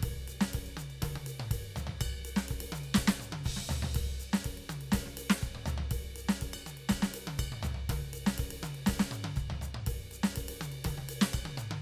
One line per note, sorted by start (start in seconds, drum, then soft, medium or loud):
0.01 kick medium
0.01 hi-hat pedal soft
0.01 ride loud
0.28 hi-hat pedal medium
0.28 ride medium
0.41 snare loud
0.53 kick medium
0.53 hi-hat pedal medium
0.53 ride loud
0.66 ride bell soft
0.77 hi-hat pedal loud
0.77 high tom loud
0.90 ride bell soft
1.02 kick medium
1.02 hi-hat pedal medium
1.02 high tom loud
1.02 ride loud
1.16 high tom loud
1.27 hi-hat pedal medium
1.27 ride loud
1.40 mid tom loud
1.51 kick medium
1.51 hi-hat pedal medium
1.51 ride loud
1.76 floor tom loud
1.76 hi-hat pedal medium
1.87 floor tom loud
2.01 kick medium
2.01 hi-hat pedal medium
2.01 ride bell loud
2.25 hi-hat pedal medium
2.25 ride loud
2.36 snare loud
2.49 kick medium
2.49 hi-hat pedal medium
2.49 ride loud
2.61 ride loud
2.72 hi-hat pedal medium
2.72 high tom loud
2.84 ride bell soft
2.94 kick medium
2.94 snare loud
2.94 hi-hat pedal medium
2.94 ride bell loud
3.08 snare loud
3.20 hi-hat pedal medium
3.20 mid tom medium
3.33 high tom loud
3.44 kick medium
3.44 hi-hat pedal medium
3.44 ride loud
3.57 snare medium
3.69 floor tom loud
3.69 hi-hat pedal medium
3.83 floor tom loud
3.95 kick medium
3.95 hi-hat pedal medium
3.95 ride loud
4.20 hi-hat pedal loud
4.20 ride soft
4.33 snare loud
4.44 kick medium
4.44 hi-hat pedal medium
4.44 ride loud
4.58 ride medium
4.69 hi-hat pedal medium
4.69 high tom loud
4.81 ride medium
4.92 kick medium
4.92 snare loud
4.92 hi-hat pedal medium
4.92 ride loud
5.06 snare soft
5.17 hi-hat pedal medium
5.17 ride loud
5.30 snare loud
5.42 kick medium
5.42 hi-hat pedal medium
5.42 ride bell medium
5.55 mid tom medium
5.66 floor tom loud
5.66 hi-hat pedal medium
5.78 floor tom loud
5.91 kick medium
5.91 hi-hat pedal medium
5.91 ride loud
6.16 hi-hat pedal medium
6.16 ride medium
6.29 snare loud
6.41 kick medium
6.41 hi-hat pedal medium
6.41 ride loud
6.54 ride bell loud
6.67 hi-hat pedal medium
6.67 high tom medium
6.77 ride medium
6.89 kick medium
6.89 snare loud
6.89 hi-hat pedal medium
6.89 ride bell loud
7.02 snare loud
7.14 hi-hat pedal medium
7.14 ride loud
7.27 high tom loud
7.38 kick medium
7.38 hi-hat pedal medium
7.38 ride bell loud
7.52 mid tom loud
7.63 floor tom loud
7.63 hi-hat pedal medium
7.75 floor tom medium
7.89 kick medium
7.89 hi-hat pedal medium
7.89 high tom loud
7.89 ride loud
8.13 hi-hat pedal medium
8.13 ride loud
8.27 snare loud
8.38 kick medium
8.38 hi-hat pedal medium
8.38 ride loud
8.51 ride loud
8.63 hi-hat pedal medium
8.63 high tom loud
8.75 ride medium
8.86 kick medium
8.86 snare loud
8.86 hi-hat pedal medium
8.86 ride loud
9.00 snare loud
9.11 hi-hat pedal medium
9.11 mid tom loud
9.24 high tom loud
9.36 kick medium
9.36 hi-hat pedal medium
9.36 ride bell soft
9.36 floor tom soft
9.50 floor tom loud
9.62 floor tom medium
9.62 hi-hat pedal loud
9.75 mid tom loud
9.87 kick medium
9.87 hi-hat pedal medium
9.87 ride loud
10.11 hi-hat pedal medium
10.11 ride medium
10.24 snare loud
10.36 kick medium
10.36 hi-hat pedal medium
10.36 ride loud
10.49 ride loud
10.61 hi-hat pedal medium
10.61 high tom loud
10.72 ride medium
10.85 kick medium
10.85 hi-hat pedal medium
10.85 high tom loud
10.85 ride loud
10.98 high tom medium
11.09 hi-hat pedal medium
11.09 ride loud
11.21 snare loud
11.34 kick medium
11.34 hi-hat pedal medium
11.34 ride bell loud
11.45 high tom loud
11.54 kick soft
11.54 hi-hat pedal medium
11.54 mid tom loud
11.71 high tom loud